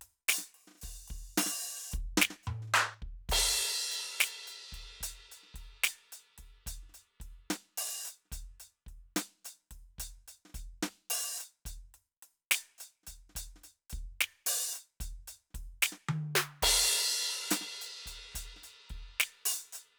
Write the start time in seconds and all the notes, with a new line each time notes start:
0.01 closed hi-hat
0.28 open hi-hat, snare
0.38 snare
0.54 open hi-hat
0.67 snare
0.71 snare
0.75 snare, hi-hat pedal
0.81 open hi-hat, kick
1.07 kick, open hi-hat
1.37 open hi-hat, snare
1.46 snare
1.65 open hi-hat
1.91 kick, hi-hat pedal, open hi-hat
2.00 kick
2.17 snare
2.22 snare
2.30 snare
2.43 hi-hat pedal, mid tom
2.62 snare
2.67 snare
2.74 percussion
3.02 kick
3.29 kick, hi-hat pedal, crash
3.35 kick
3.78 snare
3.91 closed hi-hat
4.20 open hi-hat, snare
4.47 closed hi-hat
4.72 kick, closed hi-hat
5.01 closed hi-hat, kick
5.31 closed hi-hat
5.43 snare
5.48 snare
5.54 kick, closed hi-hat
5.84 closed hi-hat, snare
6.12 closed hi-hat
6.38 kick, closed hi-hat
6.66 closed hi-hat, kick
6.83 snare
6.89 snare
6.92 closed hi-hat, snare
7.20 kick, closed hi-hat
7.50 closed hi-hat, snare
7.77 open hi-hat
8.04 closed hi-hat, hi-hat pedal
8.25 snare
8.32 closed hi-hat, kick
8.60 closed hi-hat
8.86 kick, closed hi-hat
9.16 closed hi-hat, snare
9.44 closed hi-hat, hi-hat pedal
9.71 kick, closed hi-hat
9.98 closed hi-hat, kick
10.28 closed hi-hat
10.45 snare
10.49 snare
10.54 closed hi-hat, kick, snare
10.59 kick
10.82 snare, closed hi-hat
11.10 open hi-hat
11.37 closed hi-hat, hi-hat pedal
11.65 closed hi-hat, kick
11.94 closed hi-hat
12.22 closed hi-hat
12.51 closed hi-hat, snare
12.78 closed hi-hat, hi-hat pedal
13.03 closed hi-hat, snare
13.07 kick
13.29 snare
13.35 closed hi-hat, kick
13.56 snare
13.61 closed hi-hat, snare
13.64 snare
13.90 closed hi-hat, kick
13.98 kick
14.20 snare, closed hi-hat
14.46 open hi-hat, snare
14.72 closed hi-hat, hi-hat pedal
15.00 closed hi-hat, kick
15.27 closed hi-hat
15.50 kick, snare
15.55 closed hi-hat
15.82 closed hi-hat, snare
15.92 snare
16.09 high tom
16.35 snare
16.62 kick, crash
16.91 closed hi-hat
17.11 snare
17.19 snare, closed hi-hat
17.22 snare
17.51 closed hi-hat, snare
17.61 snare
17.81 closed hi-hat
18.06 closed hi-hat, kick
18.35 closed hi-hat, kick
18.56 snare
18.62 closed hi-hat, snare
18.90 kick, closed hi-hat
19.20 closed hi-hat, snare
19.45 open hi-hat
19.72 closed hi-hat, hi-hat pedal